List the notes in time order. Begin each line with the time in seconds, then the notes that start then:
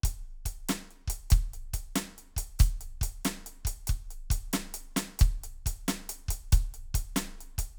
0.03 kick, closed hi-hat
0.46 kick, closed hi-hat
0.69 snare, closed hi-hat
0.91 closed hi-hat
1.08 kick, closed hi-hat
1.30 kick, closed hi-hat
1.54 closed hi-hat
1.74 kick, closed hi-hat
1.96 snare, closed hi-hat
2.18 closed hi-hat
2.37 kick, closed hi-hat
2.59 closed hi-hat, kick
2.81 closed hi-hat
3.01 kick, closed hi-hat
3.25 snare, closed hi-hat
3.46 closed hi-hat
3.65 kick, closed hi-hat
3.87 kick, closed hi-hat
4.11 closed hi-hat
4.30 kick, closed hi-hat
4.53 snare, closed hi-hat
4.74 closed hi-hat
4.96 snare, closed hi-hat
5.19 kick, closed hi-hat
5.44 closed hi-hat
5.66 kick, closed hi-hat
5.88 snare, closed hi-hat
6.09 closed hi-hat
6.28 kick, closed hi-hat
6.52 kick, closed hi-hat
6.74 closed hi-hat
6.94 kick, closed hi-hat
7.16 snare, closed hi-hat
7.41 closed hi-hat
7.58 kick, closed hi-hat